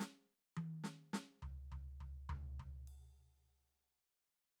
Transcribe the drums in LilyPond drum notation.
\new DrumStaff \drummode { \time 4/4 \tempo 4 = 104 <sn hhp>4 tommh8 sn8 sn8 tomfh8 tomfh8 tomfh8 | tomfh8 tomfh8 cymc4 r4 r4 | }